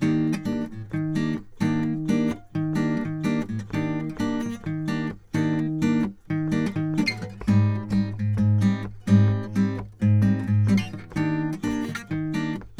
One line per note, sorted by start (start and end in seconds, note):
0.01 0.33 D#3
0.01 0.40 A#3
0.01 0.30 D4
0.01 0.32 G4
0.34 0.67 D#3
0.47 0.68 A#3
0.47 0.69 D4
0.47 0.65 G4
0.94 1.43 D#3
1.16 1.41 A#3
1.16 1.42 D4
1.16 1.42 G4
1.61 2.35 D#3
1.61 2.00 A#3
1.61 1.85 D4
1.61 1.88 G4
2.09 2.34 A#3
2.09 2.37 D4
2.09 2.39 G4
2.56 3.01 D#3
2.76 3.12 A#3
2.76 3.08 D4
2.76 3.06 G4
3.06 3.45 D#3
3.24 3.46 A#3
3.24 3.47 D4
3.24 3.44 G4
3.74 4.43 D#3
3.74 4.13 A#3
3.74 4.10 D4
3.74 4.04 G4
4.20 4.57 A#3
4.20 4.46 D4
4.20 4.46 G4
4.67 5.16 D#3
4.89 5.14 A#3
4.89 5.16 D4
4.89 5.15 G4
5.35 6.09 D#3
5.35 5.72 A#3
5.35 5.64 D4
5.35 5.64 G4
5.83 6.08 A#3
5.83 6.10 D4
5.83 6.10 G4
6.31 6.71 D#3
6.53 6.69 A#3
6.53 6.75 D4
6.53 6.72 G4
6.77 7.06 D#3
6.77 6.84 G4
6.99 7.08 A#3
6.99 7.08 D4
6.99 7.07 G4
7.48 8.15 G#2
7.48 7.88 G3
7.48 7.84 D#4
7.92 8.14 G3
7.92 8.12 C4
7.92 8.15 D#4
8.20 8.39 G#2
8.39 8.90 G#2
8.62 8.88 G3
8.62 8.88 C4
8.62 8.89 D#4
9.08 9.85 G#2
9.08 9.51 G3
9.08 9.48 C4
9.08 9.35 D#4
9.57 9.83 G3
9.57 9.82 C4
9.57 9.84 D#4
10.03 10.43 G#2
10.23 10.42 G3
10.23 10.50 C4
10.23 10.52 D#4
10.49 10.70 G#2
10.70 10.78 G3
10.70 10.79 C4
10.70 10.76 D#4
10.95 11.05 D#3
11.17 11.59 D#3
11.17 11.56 A#3
11.17 11.55 D4
11.17 11.45 G4
11.64 12.06 A#3
11.64 11.90 D4
11.64 11.93 G4
11.90 11.99 D#3
12.12 12.61 D#3
12.35 12.60 A#3
12.35 12.61 D4
12.35 12.59 G4